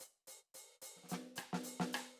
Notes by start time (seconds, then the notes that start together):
0.00 hi-hat pedal
0.27 hi-hat pedal
0.54 hi-hat pedal
0.82 hi-hat pedal
0.96 snare
1.03 snare
1.09 snare, hi-hat pedal
1.36 cross-stick, hi-hat pedal
1.53 snare
1.63 hi-hat pedal
1.80 snare
1.93 cross-stick, hi-hat pedal